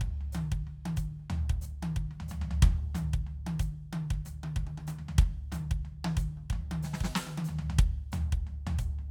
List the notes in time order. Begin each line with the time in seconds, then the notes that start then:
0.01 kick, floor tom
0.21 floor tom
0.32 hi-hat pedal, high tom
0.52 kick, floor tom
0.67 floor tom
0.85 high tom
0.97 kick, floor tom, hi-hat pedal
1.20 high tom
1.30 floor tom
1.50 kick, high tom
1.61 floor tom, hi-hat pedal
1.83 high tom
1.96 kick, floor tom
2.11 floor tom
2.20 floor tom
2.28 floor tom, hi-hat pedal
2.41 floor tom
2.51 floor tom
2.62 kick, floor tom
2.95 floor tom, hi-hat pedal, high tom
3.13 kick
3.27 floor tom
3.47 high tom
3.59 kick, floor tom, hi-hat pedal
3.93 high tom
4.10 kick, floor tom
4.25 floor tom, hi-hat pedal
4.43 high tom
4.56 kick, floor tom
4.67 high tom
4.78 high tom
4.87 hi-hat pedal, high tom
4.99 floor tom
5.09 floor tom
5.18 kick, floor tom
5.52 floor tom, hi-hat pedal, high tom
5.71 kick
5.85 floor tom
6.04 high tom
6.17 kick, floor tom, hi-hat pedal
6.37 high tom
6.50 kick, floor tom
6.71 high tom
6.83 snare, hi-hat pedal
6.93 snare
7.01 kick, snare
7.15 snare
7.27 high tom
7.38 high tom
7.44 hi-hat pedal
7.49 floor tom
7.59 floor tom
7.70 floor tom
7.79 kick
8.12 floor tom, hi-hat pedal
8.32 kick
8.47 floor tom
8.67 floor tom
8.78 kick, floor tom, hi-hat pedal
8.99 floor tom